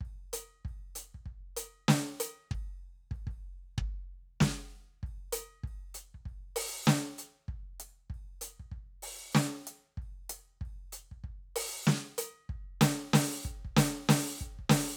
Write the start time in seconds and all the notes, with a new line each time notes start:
0.01 kick
0.05 crash
0.33 closed hi-hat
0.65 kick, crash
0.96 closed hi-hat
1.15 kick
1.26 kick
1.57 closed hi-hat
1.89 snare
2.20 closed hi-hat
2.51 kick, crash
3.11 kick, crash
3.16 ride
3.27 kick, crash
3.75 kick
3.78 kick
4.00 kick
4.41 kick, snare
5.03 kick, crash
5.33 closed hi-hat
5.64 kick, crash
5.69 ride
5.95 closed hi-hat
6.15 kick
6.26 kick, crash
6.56 open hi-hat
6.86 snare, hi-hat pedal
7.18 closed hi-hat
7.49 kick
7.80 closed hi-hat
8.10 kick
8.14 crash
8.41 closed hi-hat
8.60 kick
8.72 kick
9.03 open hi-hat
9.33 snare, hi-hat pedal
9.67 closed hi-hat
9.98 kick
10.02 crash
10.30 closed hi-hat
10.61 kick
10.65 crash
10.93 closed hi-hat
11.12 kick
11.24 kick
11.56 open hi-hat
11.86 snare, hi-hat pedal
12.18 closed hi-hat
12.49 kick
12.81 closed hi-hat, snare
13.14 open hi-hat, snare
13.44 kick, hi-hat pedal
13.65 kick
13.77 open hi-hat, snare
14.09 open hi-hat, snare
14.40 kick, hi-hat pedal
14.59 kick
14.70 open hi-hat, snare